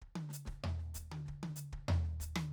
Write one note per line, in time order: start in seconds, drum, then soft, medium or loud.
0.01 kick soft
0.15 high tom medium
0.29 snare soft
0.29 hi-hat pedal medium
0.45 kick soft
0.45 snare soft
0.63 floor tom medium
0.78 snare soft
0.94 kick soft
0.94 snare soft
0.94 hi-hat pedal medium
1.11 high tom medium
1.25 kick soft
1.25 snare soft
1.43 high tom medium
1.56 snare soft
1.56 hi-hat pedal medium
1.72 kick soft
1.72 snare soft
1.88 floor tom loud
2.03 snare soft
2.19 kick soft
2.19 snare soft
2.19 hi-hat pedal medium
2.35 cross-stick medium
2.35 high tom loud